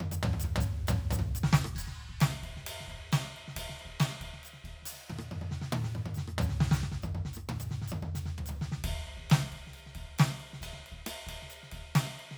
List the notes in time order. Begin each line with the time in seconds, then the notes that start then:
0.01 mid tom
0.12 mid tom, percussion
0.24 floor tom
0.34 mid tom
0.40 percussion
0.45 mid tom
0.57 floor tom
0.61 percussion
0.88 percussion, floor tom
1.11 percussion, floor tom
1.20 mid tom
1.36 percussion
1.44 snare
1.53 snare, percussion
1.65 cross-stick
1.76 kick, percussion, crash
1.88 kick, snare
1.99 kick
2.10 kick
2.15 kick
2.21 snare, ride, percussion
2.31 snare
2.44 kick, ride
2.49 kick
2.57 snare
2.67 ride, percussion
2.81 snare
2.89 kick, ride
2.94 kick
3.13 snare, ride bell, percussion
3.37 ride
3.48 snare
3.57 kick, ride, percussion
3.63 kick
3.70 snare
3.80 ride
3.86 kick
3.91 kick
4.01 snare, ride bell, percussion
4.21 kick, ride
4.27 kick
4.34 snare
4.44 ride, percussion
4.54 snare
4.65 kick, snare, ride bell
4.83 snare, percussion
4.88 ride bell
4.93 snare
4.97 snare
5.10 mid tom
5.19 cross-stick
5.32 mid tom
5.52 snare
5.62 snare
5.73 high tom
5.84 snare
5.96 mid tom
6.06 mid tom
6.15 snare, percussion
6.28 cross-stick
6.39 percussion, floor tom
6.50 snare
6.61 snare
6.72 snare, percussion
6.84 snare
6.92 snare
7.03 mid tom, percussion
7.15 mid tom
7.26 snare
7.34 cross-stick, percussion
7.50 high tom
7.61 high tom, percussion
7.72 snare
7.82 snare
7.88 percussion
7.92 mid tom
8.03 mid tom
8.16 snare, percussion
8.26 snare
8.39 floor tom
8.47 floor tom, percussion
8.62 snare
8.72 snare
8.85 kick, ride
9.02 kick
9.18 kick
9.31 snare, ride
9.53 kick, ride
9.68 snare
9.74 ride, percussion
9.87 snare
9.96 kick, ride
10.19 snare, ride, percussion
10.41 ride
10.54 snare
10.62 kick, ride bell, percussion
10.67 kick
10.74 snare
10.80 snare
10.87 ride
10.93 kick
11.07 cross-stick, ride, percussion
11.27 kick, ride
11.33 kick
11.43 snare
11.51 ride, percussion
11.64 snare
11.72 kick, ride
11.79 kick
11.96 snare, ride, percussion
12.20 ride
12.32 snare